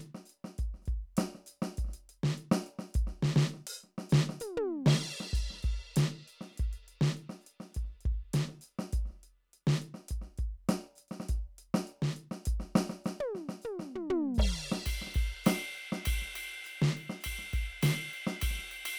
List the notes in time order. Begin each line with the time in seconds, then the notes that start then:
0.01 closed hi-hat
0.15 snare
0.26 closed hi-hat, hi-hat pedal
0.45 snare
0.58 closed hi-hat, kick
0.75 snare
0.82 snare, closed hi-hat, hi-hat pedal
0.88 kick
0.94 kick
0.97 kick
1.17 closed hi-hat, snare
1.35 snare
1.47 closed hi-hat, hi-hat pedal
1.62 snare
1.78 closed hi-hat, kick
1.85 snare
1.89 snare
1.94 closed hi-hat
2.10 closed hi-hat
2.24 snare
2.38 closed hi-hat
2.52 snare
2.61 hi-hat pedal
2.66 closed hi-hat
2.79 snare
2.89 hi-hat pedal
2.95 closed hi-hat, kick
3.02 kick
3.05 kick, snare
3.23 snare
3.36 snare
3.48 hi-hat pedal
3.54 snare
3.67 open hi-hat
3.75 hi-hat pedal
3.84 snare
3.98 snare
4.10 snare, hi-hat pedal
4.29 snare
4.41 hi-hat pedal, mid tom
4.57 mid tom
4.87 snare, crash
4.95 snare
5.21 snare
5.34 closed hi-hat, kick
5.40 kick
5.43 kick
5.51 snare
5.54 snare
5.59 snare, closed hi-hat
5.64 kick
5.96 closed hi-hat, snare
6.28 open hi-hat, hi-hat pedal
6.41 snare
6.52 snare, hi-hat pedal
6.56 closed hi-hat, kick, snare
6.73 closed hi-hat
6.88 closed hi-hat
7.01 snare
7.17 closed hi-hat
7.30 snare
7.41 hi-hat pedal
7.47 closed hi-hat
7.61 snare
7.72 closed hi-hat, snare
7.77 kick
7.85 snare
7.90 snare
8.01 closed hi-hat
8.06 kick
8.12 kick
8.15 kick
8.34 closed hi-hat, snare
8.49 snare
8.62 closed hi-hat, hi-hat pedal
8.79 snare
8.93 closed hi-hat, kick
9.02 kick, snare
9.10 snare
9.16 snare
9.24 closed hi-hat
9.54 closed hi-hat
9.67 snare
9.75 hi-hat pedal
9.82 closed hi-hat
9.95 snare
10.01 snare
10.09 closed hi-hat, kick
10.22 snare
10.27 snare
10.38 kick, closed hi-hat
10.69 closed hi-hat, snare
10.96 closed hi-hat, hi-hat pedal
11.12 snare
11.20 snare
11.29 closed hi-hat, kick
11.38 kick
11.59 closed hi-hat
11.75 snare
11.87 closed hi-hat
12.02 snare
12.12 hi-hat pedal
12.17 closed hi-hat
12.32 snare
12.46 closed hi-hat, kick
12.60 snare
12.76 snare
12.90 snare
13.05 snare, hi-hat pedal
13.20 high tom
13.35 snare
13.49 snare
13.62 hi-hat pedal, mid tom
13.80 snare
13.95 floor tom
14.10 floor tom
14.35 kick, hi-hat pedal
14.39 crash
14.46 kick
14.49 kick
14.60 kick
14.72 snare
14.86 kick, ride
15.02 snare
15.07 snare
15.15 kick, snare, ride
15.26 kick
15.45 snare, hi-hat pedal, ride bell
15.74 hi-hat pedal, ride
15.93 snare
16.05 kick, snare, hi-hat pedal, ride bell
16.16 kick
16.22 snare
16.36 ride
16.65 hi-hat pedal, ride
16.82 snare
16.97 ride
17.10 snare
17.21 hi-hat pedal, ride bell
17.26 kick
17.39 snare
17.44 snare
17.53 kick, ride
17.63 kick
17.82 snare, hi-hat pedal, ride bell
17.97 snare
18.14 ride
18.27 snare
18.41 kick, hi-hat pedal, ride bell
18.51 snare
18.56 snare
18.59 snare
18.72 ride
18.86 ride bell
18.95 hi-hat pedal